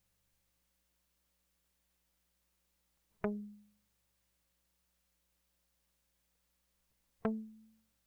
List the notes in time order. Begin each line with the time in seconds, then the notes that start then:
3.25 G#3
7.26 A3